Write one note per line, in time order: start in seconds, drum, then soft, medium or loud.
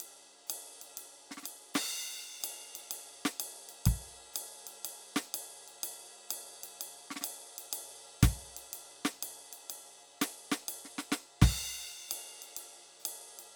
0.01 ride medium
0.48 hi-hat pedal soft
0.48 ride loud
0.82 ride medium
0.98 ride medium
1.32 snare medium
1.38 snare medium
1.38 hi-hat pedal soft
1.44 snare soft
1.44 ride medium
1.75 snare loud
1.75 crash loud
2.41 hi-hat pedal medium
2.41 ride loud
2.76 ride medium
2.92 ride loud
3.26 snare loud
3.26 hi-hat pedal medium
3.41 ride loud
3.70 ride medium
3.86 kick loud
3.86 ride loud
4.34 hi-hat pedal medium
4.34 ride loud
4.68 ride medium
4.86 ride loud
5.17 snare loud
5.23 hi-hat pedal medium
5.35 ride loud
5.69 ride soft
5.84 ride loud
6.30 hi-hat pedal medium
6.30 ride loud
6.64 ride medium
6.82 ride loud
7.11 snare medium
7.17 snare medium
7.22 snare medium
7.22 hi-hat pedal soft
7.22 ride loud
7.59 ride medium
7.74 ride loud
8.21 kick loud
8.21 snare loud
8.21 hi-hat pedal soft
8.21 ride loud
8.57 ride medium
8.74 ride medium
9.06 snare loud
9.23 ride loud
9.54 ride medium
9.71 ride loud
10.22 snare loud
10.22 ride loud
10.52 snare loud
10.69 ride loud
10.86 snare soft
10.99 snare medium
11.13 snare loud
11.42 kick loud
11.42 snare loud
11.42 hi-hat pedal soft
11.42 crash loud
12.09 hi-hat pedal medium
12.09 ride loud
12.43 ride medium
12.57 ride medium
13.00 hi-hat pedal soft
13.06 ride loud
13.40 ride medium